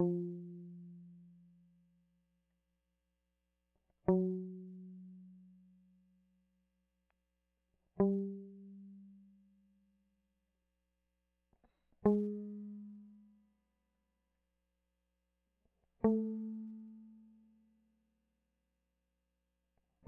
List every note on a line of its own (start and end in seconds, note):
0.00 2.34 F3
4.09 6.70 F#3
8.01 10.18 G3
12.06 12.40 G#3
16.05 18.22 A3